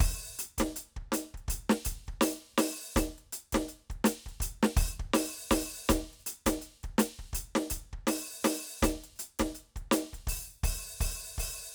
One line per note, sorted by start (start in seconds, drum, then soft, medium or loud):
0.01 open hi-hat loud
0.01 kick loud
0.38 closed hi-hat loud
0.38 hi-hat pedal soft
0.59 kick medium
0.59 snare loud
0.59 closed hi-hat loud
0.77 closed hi-hat loud
0.97 kick soft
1.13 closed hi-hat loud
1.13 snare medium
1.35 kick soft
1.35 closed hi-hat soft
1.49 closed hi-hat loud
1.49 kick medium
1.70 snare loud
1.86 closed hi-hat loud
1.86 kick medium
2.08 kick soft
2.08 closed hi-hat soft
2.22 open hi-hat loud
2.22 snare loud
2.22 hi-hat pedal soft
2.54 kick soft
2.59 open hi-hat loud
2.59 snare loud
2.97 open hi-hat loud
2.97 kick medium
2.97 snare loud
2.97 hi-hat pedal soft
3.19 closed hi-hat soft
3.33 closed hi-hat loud
3.53 kick medium
3.53 snare loud
3.53 closed hi-hat medium
3.69 closed hi-hat medium
3.91 kick medium
3.91 closed hi-hat soft
4.05 closed hi-hat loud
4.05 snare loud
4.27 kick soft
4.27 closed hi-hat soft
4.41 closed hi-hat loud
4.41 kick medium
4.64 snare loud
4.77 open hi-hat loud
4.77 kick loud
4.89 hi-hat pedal soft
5.00 kick medium
5.11 kick soft
5.11 snare loud
5.15 open hi-hat loud
5.52 open hi-hat loud
5.52 kick medium
5.52 snare loud
5.89 closed hi-hat loud
5.89 kick medium
5.89 snare loud
5.89 hi-hat pedal medium
6.14 closed hi-hat soft
6.20 hi-hat pedal soft
6.27 closed hi-hat loud
6.47 closed hi-hat loud
6.47 kick medium
6.47 snare loud
6.62 closed hi-hat medium
6.84 kick medium
6.84 closed hi-hat soft
6.99 closed hi-hat loud
6.99 snare loud
7.20 kick soft
7.34 closed hi-hat loud
7.34 kick medium
7.56 snare loud
7.71 closed hi-hat loud
7.71 kick medium
7.94 kick soft
8.08 open hi-hat loud
8.08 snare loud
8.43 open hi-hat loud
8.43 kick soft
8.43 snare loud
8.83 open hi-hat loud
8.83 kick medium
8.83 snare loud
8.83 hi-hat pedal soft
9.04 closed hi-hat medium
9.16 open hi-hat loud
9.16 hi-hat pedal soft
9.40 kick medium
9.40 snare loud
9.40 closed hi-hat medium
9.55 closed hi-hat medium
9.77 kick medium
9.77 closed hi-hat soft
9.92 closed hi-hat loud
9.92 snare loud
10.14 kick soft
10.14 closed hi-hat medium
10.28 open hi-hat loud
10.28 kick medium
10.64 open hi-hat loud
10.64 kick loud
11.01 open hi-hat loud
11.01 kick medium
11.39 open hi-hat loud
11.39 kick medium